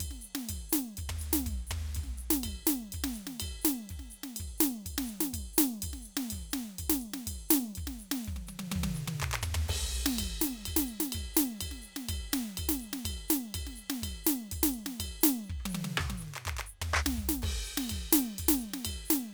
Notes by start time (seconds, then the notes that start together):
0.01 kick, ride bell
0.07 kick
0.11 snare
0.22 hi-hat pedal, ride
0.36 snare
0.44 hi-hat pedal
0.49 kick, ride bell
0.70 snare, hi-hat pedal
0.98 kick, ride bell
1.05 kick
1.10 floor tom
1.19 hi-hat pedal, ride bell
1.34 snare
1.47 kick, ride bell
1.53 kick
1.68 hi-hat pedal
1.72 floor tom
1.95 kick, ride bell
2.03 kick, snare
2.12 snare
2.18 hi-hat pedal, ride
2.31 snare
2.44 kick, ride bell
2.66 snare, hi-hat pedal
2.93 kick, ride bell
3.00 kick
3.05 snare
3.14 hi-hat pedal, ride
3.28 snare
3.41 kick, ride bell
3.62 snare, hi-hat pedal
3.90 kick, ride
3.97 kick, snare
4.11 hi-hat pedal, ride
4.24 snare
4.37 kick, ride bell
4.59 snare, hi-hat pedal
4.86 kick, ride bell
4.92 kick
4.99 snare
5.06 hi-hat pedal, ride
5.21 snare
5.34 kick, ride bell
5.40 kick
5.54 hi-hat pedal
5.59 snare
5.83 kick, ride bell
5.90 kick
5.94 snare
6.03 hi-hat pedal, ride
6.18 snare
6.31 kick, ride bell
6.39 kick
6.51 snare, hi-hat pedal
6.79 kick, ride bell
6.86 kick
6.90 snare
6.99 hi-hat pedal, ride
7.14 snare
7.28 kick, ride bell
7.50 snare, hi-hat pedal
7.58 snare
7.76 kick, ride bell
7.84 kick, snare
7.99 hi-hat pedal, ride
8.12 snare
8.25 kick, ride
8.35 kick, high tom
8.48 hi-hat pedal, high tom
8.60 high tom
8.72 kick, high tom
8.83 kick, high tom
8.95 hi-hat pedal, mid tom
9.08 mid tom
9.21 kick, percussion
9.29 kick, percussion
9.42 floor tom, hi-hat pedal
9.55 floor tom
9.69 kick, crash
9.77 kick
9.82 kick
9.93 hi-hat pedal
10.07 snare
10.19 kick, ride bell
10.40 snare, hi-hat pedal
10.48 snare
10.62 hi-hat pedal
10.66 kick, ride bell
10.77 snare
10.87 hi-hat pedal, ride
11.01 snare
11.13 kick, ride bell
11.21 kick
11.35 snare, hi-hat pedal
11.57 hi-hat pedal
11.61 kick, ride bell
11.68 kick, snare
11.82 hi-hat pedal, ride
11.97 snare
12.09 kick, ride bell
12.17 kick
12.33 snare, hi-hat pedal
12.58 kick, ride bell
12.65 kick
12.70 snare
12.80 hi-hat pedal, ride
12.94 snare
13.06 kick, ride bell
13.11 kick
13.29 snare, hi-hat pedal
13.55 kick, ride bell
13.62 kick
13.67 snare
13.76 hi-hat pedal, ride
13.91 snare
13.99 hi-hat pedal
14.03 kick, ride bell
14.09 kick
14.25 snare, hi-hat pedal
14.52 kick, ride bell
14.59 kick
14.64 snare
14.72 hi-hat pedal, ride
14.87 snare
15.00 kick, ride bell
15.06 kick
15.22 snare, hi-hat pedal
15.44 hi-hat pedal
15.50 kick
15.56 kick
15.61 cross-stick
15.66 hi-hat pedal, high tom
15.75 high tom
15.85 high tom
15.98 kick, cross-stick
16.07 kick, high tom
16.18 hi-hat pedal
16.23 mid tom
16.29 ride
16.34 percussion
16.46 kick, percussion
16.53 kick
16.57 percussion
16.67 hi-hat pedal
16.82 floor tom
16.94 kick, percussion
17.01 kick
17.07 snare
17.17 kick, hi-hat pedal
17.30 snare
17.43 kick, crash
17.56 kick
17.65 hi-hat pedal
17.78 snare
17.90 kick, ride bell
17.98 kick
18.12 snare, hi-hat pedal
18.39 kick, ride bell
18.49 snare
18.59 hi-hat pedal, ride
18.74 snare
18.85 kick, ride bell
18.92 kick
19.06 hi-hat pedal
19.11 snare